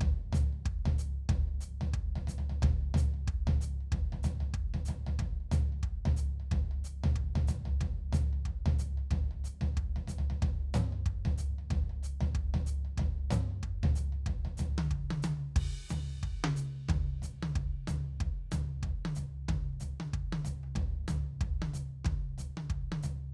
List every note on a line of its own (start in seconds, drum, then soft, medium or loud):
0.01 kick medium
0.01 floor tom loud
0.33 floor tom loud
0.33 hi-hat pedal medium
0.53 floor tom soft
0.65 kick medium
0.65 floor tom soft
0.86 floor tom loud
0.99 floor tom soft
0.99 hi-hat pedal medium
1.29 kick medium
1.29 floor tom loud
1.48 floor tom soft
1.52 floor tom soft
1.61 floor tom soft
1.61 hi-hat pedal medium
1.81 floor tom loud
1.94 kick medium
1.94 floor tom soft
2.16 floor tom medium
2.28 floor tom medium
2.28 hi-hat pedal medium
2.39 floor tom medium
2.50 floor tom medium
2.63 kick medium
2.63 floor tom loud
2.81 floor tom soft
2.95 floor tom loud
2.95 hi-hat pedal medium
3.14 floor tom soft
3.28 kick medium
3.47 floor tom loud
3.61 floor tom soft
3.61 hi-hat pedal medium
3.81 floor tom soft
3.92 kick medium
3.92 floor tom medium
4.13 floor tom medium
4.24 floor tom loud
4.24 hi-hat pedal medium
4.41 floor tom medium
4.54 kick medium
4.74 floor tom medium
4.86 floor tom medium
4.86 hi-hat pedal medium
5.07 floor tom medium
5.19 kick medium
5.19 floor tom medium
5.41 floor tom soft
5.52 floor tom loud
5.52 hi-hat pedal medium
5.73 floor tom soft
5.83 kick medium
5.83 floor tom soft
6.06 floor tom loud
6.17 floor tom soft
6.17 hi-hat pedal medium
6.40 floor tom soft
6.52 kick medium
6.52 floor tom loud
6.71 floor tom soft
6.85 floor tom soft
6.85 hi-hat pedal medium
7.04 floor tom loud
7.16 kick medium
7.16 floor tom soft
7.36 floor tom loud
7.48 floor tom medium
7.48 hi-hat pedal medium
7.66 floor tom medium
7.81 kick medium
7.81 floor tom medium
8.13 floor tom loud
8.13 hi-hat pedal medium
8.33 floor tom soft
8.46 kick medium
8.46 floor tom soft
8.66 floor tom loud
8.79 floor tom soft
8.79 hi-hat pedal medium
8.98 floor tom soft
9.11 kick medium
9.11 floor tom loud
9.31 floor tom soft
9.44 floor tom soft
9.44 hi-hat pedal medium
9.61 floor tom loud
9.77 kick medium
9.77 floor tom soft
9.96 kick soft
9.96 floor tom medium
10.08 floor tom medium
10.08 hi-hat pedal medium
10.19 floor tom medium
10.30 floor tom medium
10.42 kick medium
10.42 floor tom loud
10.60 floor tom soft
10.74 hi-hat pedal medium
10.74 floor tom loud
10.93 floor tom soft
11.06 kick medium
11.06 floor tom soft
11.25 floor tom loud
11.38 floor tom soft
11.38 hi-hat pedal medium
11.59 floor tom soft
11.71 kick medium
11.71 floor tom loud
11.90 floor tom soft
12.03 floor tom soft
12.03 hi-hat pedal medium
12.21 floor tom loud
12.35 kick medium
12.35 floor tom soft
12.54 floor tom loud
12.67 floor tom soft
12.67 hi-hat pedal medium
12.85 floor tom soft
12.98 kick medium
12.98 floor tom loud
13.18 floor tom soft
13.31 hi-hat pedal medium
13.31 floor tom loud
13.51 floor tom soft
13.63 kick medium
13.63 floor tom soft
13.84 floor tom loud
13.96 floor tom soft
13.96 hi-hat pedal medium
14.13 floor tom soft
14.26 kick medium
14.26 floor tom medium
14.45 floor tom medium
14.58 floor tom loud
14.58 hi-hat pedal medium
14.78 high tom loud
14.91 kick medium
15.11 high tom loud
15.23 hi-hat pedal medium
15.23 high tom loud
15.56 kick loud
15.56 crash medium
15.89 kick soft
15.89 floor tom medium
15.89 hi-hat pedal medium
15.89 high tom medium
16.23 kick medium
16.23 floor tom soft
16.44 high tom loud
16.57 hi-hat pedal medium
16.89 kick medium
16.89 floor tom medium
16.89 high tom loud
17.22 floor tom medium
17.22 hi-hat pedal medium
17.43 high tom loud
17.56 kick medium
17.56 floor tom soft
17.88 floor tom medium
17.88 hi-hat pedal medium
17.88 high tom loud
18.21 kick medium
18.21 floor tom medium
18.52 floor tom medium
18.52 hi-hat pedal medium
18.52 high tom loud
18.83 kick medium
18.83 floor tom medium
19.05 high tom loud
19.16 floor tom medium
19.16 hi-hat pedal medium
19.49 kick medium
19.49 floor tom medium
19.49 high tom loud
19.80 floor tom medium
19.80 hi-hat pedal medium
20.00 high tom loud
20.14 kick medium
20.14 floor tom soft
20.33 high tom loud
20.45 floor tom medium
20.45 hi-hat pedal medium
20.64 high tom soft
20.76 kick medium
20.76 floor tom loud
21.08 floor tom medium
21.08 hi-hat pedal medium
21.08 high tom loud
21.41 kick medium
21.41 floor tom medium
21.62 high tom loud
21.73 kick soft
21.73 floor tom medium
21.73 hi-hat pedal medium
22.05 kick medium
22.05 floor tom medium
22.05 high tom medium
22.38 floor tom medium
22.38 hi-hat pedal medium
22.57 high tom medium
22.70 kick medium
22.70 floor tom soft
22.92 high tom loud
23.03 floor tom medium
23.03 hi-hat pedal medium